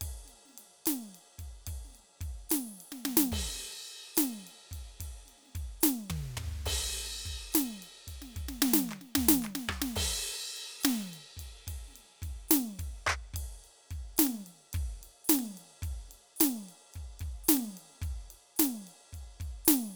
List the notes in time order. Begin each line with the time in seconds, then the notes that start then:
0.01 kick, ride
0.25 snare, ride
0.45 snare
0.49 snare
0.53 snare
0.58 ride
0.86 snare, hi-hat pedal, ride
1.15 ride
1.39 kick, ride
1.67 kick, ride
1.85 snare
1.90 snare, hi-hat pedal
1.94 snare, ride
2.21 kick, ride
2.28 kick
2.49 snare, hi-hat pedal, ride
2.80 ride
2.92 snare
3.05 snare
3.17 snare
3.32 kick, crash
3.38 kick
3.48 snare
3.55 snare
3.59 snare
3.87 ride
4.15 snare, hi-hat pedal, ride
4.43 snare, ride
4.70 kick, snare, ride
5.00 kick, ride
5.25 snare, ride
5.38 snare
5.43 snare
5.45 snare
5.55 kick, ride
5.81 snare, hi-hat pedal, ride
6.10 kick, mid tom
6.37 kick, floor tom
6.66 kick, crash
6.72 kick
7.05 snare
7.10 snare
7.14 snare
7.17 snare
7.19 snare
7.25 kick, ride
7.52 snare, hi-hat pedal, ride
7.82 ride
8.07 kick, ride
8.22 snare
8.36 kick, ride
8.48 snare
8.62 snare, hi-hat pedal
8.73 snare
8.87 percussion, hi-hat pedal
9.01 snare
9.15 kick, snare
9.28 snare
9.41 percussion, hi-hat pedal
9.55 snare
9.68 kick, cross-stick
9.82 snare
9.96 kick, crash
10.03 kick
10.56 ride
10.80 hi-hat pedal, ride
10.85 snare
10.94 snare
11.07 hi-hat pedal
11.13 ride
11.37 kick, ride
11.67 kick, ride
11.72 kick
11.88 snare
11.92 snare, ride
12.04 snare
12.22 kick, snare, ride
12.30 kick
12.48 snare, hi-hat pedal, ride
12.60 snare
12.75 kick, hi-hat pedal, ride
12.86 snare
13.06 kick, percussion
13.34 kick, ride
13.40 kick
13.64 ride
13.84 snare
13.91 kick, ride
14.16 snare, hi-hat pedal, ride
14.27 snare
14.46 ride
14.51 snare
14.57 snare
14.73 kick, ride
14.81 kick
15.03 ride
15.24 hi-hat pedal
15.29 snare, ride
15.39 snare
15.57 snare, ride
15.65 snare
15.82 kick, ride
15.89 kick
16.08 snare, ride
16.36 hi-hat pedal, ride
16.41 snare
16.69 ride
16.92 kick, hi-hat pedal, ride
17.19 kick, ride
17.27 kick
17.44 hi-hat pedal
17.48 snare, ride
17.57 snare
17.70 hi-hat pedal
17.77 ride
17.90 snare
17.93 snare
18.02 kick, hi-hat pedal, ride
18.08 kick
18.30 ride
18.56 snare, hi-hat pedal, ride
18.87 ride
19.12 kick, hi-hat pedal, ride
19.40 kick, ride
19.65 snare, hi-hat pedal, ride
19.91 snare